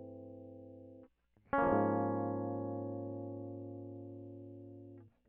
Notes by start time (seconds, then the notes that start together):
1.53 C#4
1.59 A#3
1.63 F3
1.74 G#2